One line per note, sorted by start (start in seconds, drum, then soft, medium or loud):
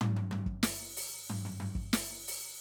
0.01 floor tom loud
0.01 high tom loud
0.16 floor tom medium
0.16 high tom medium
0.31 floor tom medium
0.31 high tom loud
0.46 kick medium
0.63 open hi-hat loud
0.63 snare loud
0.97 open hi-hat loud
1.30 floor tom loud
1.30 high tom medium
1.45 floor tom medium
1.45 high tom medium
1.60 floor tom medium
1.60 high tom medium
1.75 kick medium
1.93 open hi-hat loud
1.93 snare loud
2.28 open hi-hat loud